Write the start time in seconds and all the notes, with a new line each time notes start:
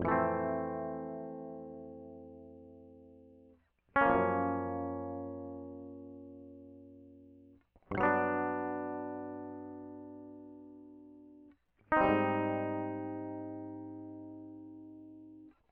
0.01 F2
0.06 E3 A3
0.12 C4
3.97 C#4
4.02 A#3
4.07 F3
4.17 F#2
7.94 G2
7.99 F#3 B3
8.04 D4
11.93 D#4
11.98 C4
12.02 A2 G3
12.11 G#2